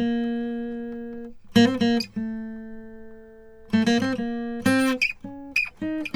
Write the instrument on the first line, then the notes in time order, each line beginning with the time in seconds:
acoustic guitar
0.00 A#3
1.57 B3
1.83 A#3
2.18 A3
3.75 A3
3.88 A#3
4.04 C4
4.14 A#3
4.67 C4
5.26 C#4
5.84 D#4